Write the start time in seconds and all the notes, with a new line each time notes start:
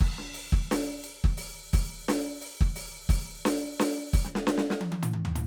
0.01 kick, crash
0.19 snare
0.35 open hi-hat
0.53 kick
0.72 open hi-hat, snare
0.80 snare
1.05 open hi-hat
1.25 kick
1.38 open hi-hat
1.74 open hi-hat, kick
2.09 open hi-hat, snare
2.42 open hi-hat
2.62 kick
2.76 open hi-hat
3.10 open hi-hat, kick
3.46 open hi-hat, snare
3.81 open hi-hat, snare
4.14 open hi-hat, kick
4.25 snare, hi-hat pedal
4.36 snare
4.48 snare
4.52 hi-hat pedal
4.59 snare
4.71 snare, hi-hat pedal
4.82 high tom
4.93 high tom
5.04 mid tom
5.14 high tom
5.26 floor tom
5.36 mid tom